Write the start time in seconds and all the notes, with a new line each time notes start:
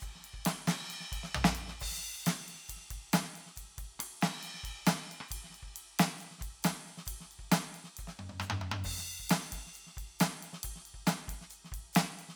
0.01 kick, hi-hat pedal, ride
0.09 kick
0.16 snare
0.20 snare
0.25 ride
0.34 kick
0.40 kick
0.45 snare, hi-hat pedal, ride
0.68 snare, ride
0.91 hi-hat pedal, ride
1.01 snare
1.13 kick, ride
1.20 kick
1.24 snare
1.35 hi-hat pedal, floor tom
1.45 snare
1.56 ride
1.69 snare
1.80 kick, hi-hat pedal, crash
1.89 kick, snare
1.98 snare
2.27 snare, hi-hat pedal, ride
2.49 ride
2.55 snare
2.69 kick, hi-hat pedal, ride
2.77 snare
2.81 snare
2.85 snare
2.91 kick, ride
2.97 kick
3.13 snare, hi-hat pedal, ride
3.23 snare
3.36 ride
3.47 snare
3.57 kick, hi-hat pedal, ride
3.64 snare
3.67 snare
3.70 snare
3.73 snare
3.79 kick, ride
3.85 kick
4.00 cross-stick, hi-hat pedal, ride
4.22 snare, ride
4.44 hi-hat pedal, ride
4.55 snare
4.64 kick, ride
4.70 kick
4.86 snare, hi-hat pedal, ride
4.96 snare
5.12 ride
5.21 cross-stick
5.29 kick, hi-hat pedal, ride
5.38 kick
5.40 kick
5.45 snare
5.51 snare
5.55 ride
5.63 kick
5.76 hi-hat pedal, ride
6.00 snare, ride
6.08 snare
6.18 hi-hat pedal, ride
6.32 snare
6.39 kick, snare
6.43 ride
6.48 kick
6.63 snare, hi-hat pedal, ride
6.89 ride
6.98 snare
7.06 kick, hi-hat pedal, ride
7.14 kick
7.21 snare
7.32 ride
7.40 kick
7.52 snare, hi-hat pedal, ride
7.75 ride
7.84 snare
7.98 kick, hi-hat pedal, ride
8.05 kick, snare
8.20 high tom
8.30 high tom
8.41 hi-hat pedal, high tom
8.51 high tom
8.62 high tom
8.72 high tom
8.85 kick, hi-hat pedal, crash
8.92 kick
8.99 snare
9.04 snare
9.20 kick
9.30 snare, hi-hat pedal, ride
9.53 kick, ride
9.59 kick
9.67 snare
9.74 hi-hat pedal, ride
9.87 snare
9.97 kick, snare, ride
10.20 snare, hi-hat pedal, ride
10.43 ride
10.53 snare
10.64 kick, hi-hat pedal, ride
10.71 kick
10.76 snare
10.86 ride
10.95 kick
11.07 snare, hi-hat pedal, ride
11.29 kick, ride
11.42 snare
11.51 hi-hat pedal, ride
11.65 snare
11.73 kick, ride
11.80 kick
11.94 snare, hi-hat pedal, ride
12.04 snare
12.20 ride
12.29 snare